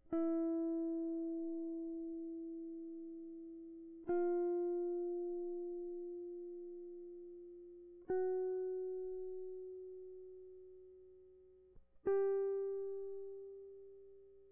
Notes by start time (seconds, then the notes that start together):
0.13 E4
4.09 F4
8.10 F#4
12.07 G4